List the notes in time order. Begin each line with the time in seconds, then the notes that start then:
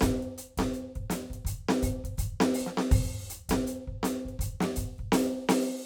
0.01 open hi-hat, kick, snare, hi-hat pedal
0.23 closed hi-hat
0.38 closed hi-hat
0.58 kick, snare, closed hi-hat
0.74 closed hi-hat
0.96 kick, closed hi-hat
1.10 closed hi-hat, snare
1.30 kick, closed hi-hat
1.45 closed hi-hat, kick
1.69 snare
1.83 open hi-hat, kick, hi-hat pedal
2.04 kick, closed hi-hat
2.18 closed hi-hat, kick, hi-hat pedal
2.41 snare
2.54 open hi-hat
2.60 kick, hi-hat pedal
2.67 snare
2.78 snare
2.91 open hi-hat, kick
3.29 closed hi-hat, hi-hat pedal
3.49 kick, snare, closed hi-hat
3.67 closed hi-hat
3.88 kick
4.03 closed hi-hat, snare
4.25 kick, closed hi-hat
4.39 closed hi-hat, kick
4.61 snare
4.76 closed hi-hat, kick
4.99 kick, closed hi-hat
5.12 open hi-hat, snare, hi-hat pedal
5.45 kick
5.49 open hi-hat, snare